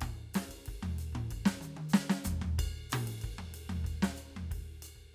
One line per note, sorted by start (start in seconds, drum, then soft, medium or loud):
0.01 kick soft
0.01 mid tom medium
0.01 ride bell medium
0.34 snare medium
0.34 hi-hat pedal medium
0.34 ride medium
0.49 kick soft
0.49 ride bell medium
0.66 kick soft
0.66 ride medium
0.83 floor tom loud
0.99 hi-hat pedal medium
0.99 ride soft
1.13 kick soft
1.13 mid tom loud
1.31 kick soft
1.31 ride bell medium
1.46 snare loud
1.61 hi-hat pedal medium
1.61 high tom medium
1.77 high tom medium
1.89 kick soft
1.89 hi-hat pedal medium
1.94 snare loud
2.10 snare loud
2.24 kick soft
2.24 floor tom loud
2.24 hi-hat pedal loud
2.42 floor tom medium
2.59 kick medium
2.59 ride bell loud
2.80 kick soft
2.90 hi-hat pedal medium
2.90 mid tom loud
2.90 ride loud
3.04 kick soft
3.04 ride medium
3.22 kick soft
3.22 ride bell medium
3.39 floor tom medium
3.54 hi-hat pedal medium
3.54 ride medium
3.66 kick soft
3.66 floor tom loud
3.84 kick soft
3.84 ride bell medium
4.03 snare loud
4.16 hi-hat pedal medium
4.16 ride bell soft
4.30 kick soft
4.37 floor tom medium
4.51 kick soft
4.51 ride medium
4.83 hi-hat pedal medium
4.83 ride bell medium
4.96 kick soft